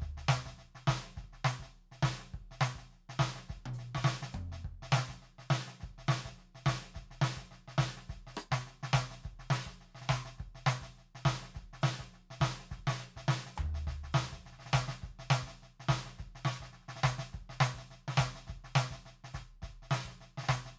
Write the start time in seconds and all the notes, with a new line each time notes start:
0.01 kick, snare
0.09 kick
0.17 snare
0.28 snare, hi-hat pedal
0.46 kick, snare
0.58 snare
0.75 snare
0.87 kick, snare, hi-hat pedal
1.03 snare
1.17 kick, snare
1.24 kick
1.33 snare
1.45 snare, hi-hat pedal
1.59 kick, snare
1.92 snare
2.03 kick, snare, hi-hat pedal
2.09 kick
2.19 snare
2.31 kick, snare
2.41 kick
2.51 snare
2.60 snare, hi-hat pedal
2.75 kick, snare
2.92 snare
3.09 snare
3.19 kick, snare, hi-hat pedal
3.36 snare
3.49 kick, snare
3.56 kick
3.66 high tom
3.74 hi-hat pedal
3.78 snare
3.95 kick, snare
4.02 kick, snare
4.22 snare
4.32 kick, hi-hat pedal, mid tom
4.41 kick
4.44 kick
4.52 snare
4.65 kick
4.71 kick
4.74 kick
4.82 snare
4.91 snare, hi-hat pedal
4.97 snare
5.09 kick, snare
5.22 snare
5.39 snare
5.50 snare, hi-hat pedal
5.67 snare
5.80 kick, snare
5.89 kick
5.98 snare
6.07 snare, hi-hat pedal
6.25 kick, snare
6.38 snare
6.55 snare
6.65 kick, snare, hi-hat pedal
6.73 kick
6.82 snare
6.94 kick, snare
7.02 kick
7.04 kick
7.11 snare
7.22 snare, hi-hat pedal
7.37 kick, snare
7.51 snare
7.68 snare
7.78 kick, snare, hi-hat pedal
7.85 kick
7.97 snare
8.09 kick, snare
8.16 kick
8.27 snare
8.34 cross-stick, hi-hat pedal
8.51 kick, snare
8.67 snare
8.83 snare
8.93 kick, snare, hi-hat pedal
9.00 kick
9.11 snare
9.23 kick, snare
9.39 snare
9.50 snare, hi-hat pedal
9.66 kick, snare
9.81 snare
9.89 snare
9.93 snare
9.95 snare
10.01 snare
10.06 snare, hi-hat pedal
10.09 kick, snare
10.14 snare
10.18 kick
10.25 snare
10.38 kick, snare
10.46 kick
10.55 snare
10.66 snare, hi-hat pedal
10.81 kick, snare
10.98 snare
11.15 snare
11.25 kick, snare, hi-hat pedal
11.34 kick
11.42 snare
11.54 kick, snare
11.63 kick
11.73 snare
11.82 snare, hi-hat pedal
11.99 kick, snare
12.14 snare
12.30 snare
12.40 kick, snare, hi-hat pedal
12.47 kick
12.59 snare
12.71 kick, snare
12.78 kick
12.87 snare
12.97 snare, hi-hat pedal
13.16 kick, snare
13.28 snare
13.46 snare
13.56 kick, floor tom, hi-hat pedal
13.74 snare
13.87 kick, snare
13.94 kick
13.97 kick
14.03 snare
14.13 snare, hi-hat pedal
14.32 kick, snare
14.38 kick
14.46 snare
14.52 snare
14.57 snare
14.59 snare
14.66 snare
14.72 kick, snare, hi-hat pedal
14.80 kick
14.84 kick
14.88 snare
15.02 kick, snare
15.09 kick
15.19 snare
15.30 snare, hi-hat pedal
15.43 kick
15.47 snare
15.62 snare
15.80 snare
15.88 kick, snare, hi-hat pedal
16.06 snare
16.18 kick, snare
16.26 kick
16.35 snare
16.45 snare, hi-hat pedal
16.60 kick, snare
16.73 snare
16.81 snare
16.88 snare
16.96 snare
17.03 kick, snare, hi-hat pedal
17.11 kick
17.19 snare
17.33 kick, snare
17.41 kick
17.49 snare
17.60 snare, hi-hat pedal
17.74 kick, snare
17.91 snare
18.08 snare
18.17 kick, snare, hi-hat pedal
18.26 kick
18.29 kick
18.35 snare
18.47 kick, snare
18.56 kick
18.64 snare
18.75 snare, hi-hat pedal
18.91 kick, snare
19.06 snare
19.24 snare
19.34 kick, snare, hi-hat pedal
19.41 kick
19.62 kick, snare
19.70 kick
19.82 snare
19.90 snare, hi-hat pedal
20.05 kick, snare
20.21 snare
20.38 snare
20.43 snare
20.48 kick, snare, hi-hat pedal
20.66 snare